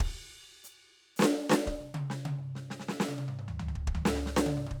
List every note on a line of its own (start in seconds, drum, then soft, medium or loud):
0.00 kick loud
0.00 crash medium
0.64 hi-hat pedal medium
1.16 snare loud
1.16 hi-hat pedal medium
1.22 snare loud
1.50 snare loud
1.51 snare loud
1.65 kick medium
1.65 snare soft
1.80 high tom soft
1.94 high tom loud
2.10 snare medium
2.25 high tom loud
2.39 mid tom soft
2.55 snare soft
2.70 snare medium
2.79 snare medium
2.88 snare medium
3.00 snare loud
3.08 hi-hat pedal soft
3.08 high tom medium
3.18 high tom medium
3.28 mid tom medium
3.39 mid tom medium
3.48 floor tom medium
3.60 floor tom loud
3.68 floor tom medium
3.75 kick soft
3.87 kick medium
3.95 floor tom loud
4.05 snare loud
4.26 snare medium
4.36 snare loud
4.46 hi-hat pedal soft
4.46 high tom loud
4.57 mid tom medium
4.67 high tom medium
4.71 kick soft